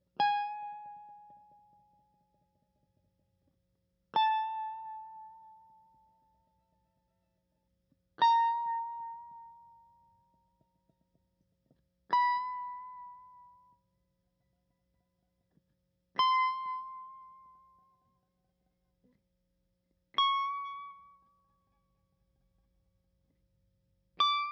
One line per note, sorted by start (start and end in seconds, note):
0.21 1.21 G#5
4.17 5.32 A5
8.22 8.70 A#5
8.71 9.19 A#5
12.13 12.90 B5
16.21 17.09 C6
20.20 20.77 C#6
24.21 24.52 D6